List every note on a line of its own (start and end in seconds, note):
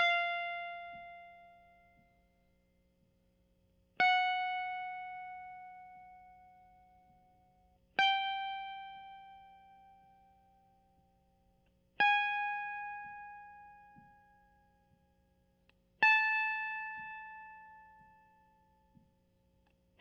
0.00 1.93 F5
4.01 7.18 F#5
7.99 10.86 G5
12.01 14.59 G#5
16.03 18.66 A5